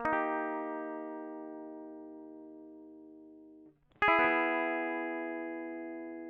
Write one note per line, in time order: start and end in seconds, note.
0.00 3.70 A#3
0.06 3.73 D#4
0.13 3.70 G4
4.03 6.30 G#4
4.09 6.30 E4
4.20 6.30 B3
4.26 4.49 F3